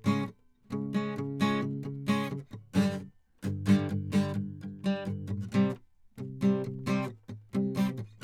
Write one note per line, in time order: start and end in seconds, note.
0.06 0.28 C#3
0.06 0.28 G#3
0.06 0.34 C#4
0.72 1.20 C#3
0.72 0.96 G#3
0.95 1.19 G#3
0.95 1.20 C#4
1.19 1.64 C#3
1.19 1.42 G#3
1.42 1.57 G#3
1.42 1.66 C#4
1.42 1.67 F4
1.58 1.65 G#3
1.64 1.84 C#3
1.64 1.83 G#3
1.85 2.31 C#3
1.85 1.95 G#3
2.09 2.31 G#3
2.09 2.38 C#4
2.09 2.46 F4
2.32 2.47 C#3
2.76 3.08 F#2
2.76 3.00 D3
2.76 3.02 G3
3.44 3.68 G2
3.44 3.69 D3
3.44 3.55 G3
3.68 3.92 G2
3.68 3.92 D3
3.68 3.93 G3
3.92 4.35 G2
3.92 4.14 D3
4.14 4.37 D3
4.14 4.41 G3
4.36 4.62 G2
4.63 5.07 G2
4.86 5.10 G3
5.07 5.29 G2
5.07 5.33 D3
5.29 5.74 F#2
5.55 5.83 C3
5.55 5.81 G3
6.20 6.44 C3
6.43 6.66 C3
6.43 6.67 G3
6.43 6.75 C4
6.66 6.88 C3
6.88 7.16 C3
6.88 7.15 G3
6.88 7.12 C4
7.55 8.08 C3
7.55 7.74 G3
7.78 7.96 G3
7.78 7.96 C4